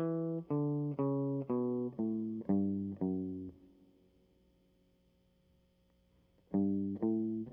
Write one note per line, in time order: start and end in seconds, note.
0.00 0.42 E3
0.52 0.96 D3
1.01 1.45 C#3
1.52 1.92 B2
2.01 2.46 A2
2.53 2.98 G2
3.04 3.53 F#2
6.56 7.01 G2
7.05 7.51 A2